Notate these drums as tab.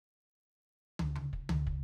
T1 |------oo-o--|
FT |------oo-o--|
BD |--------g-g-|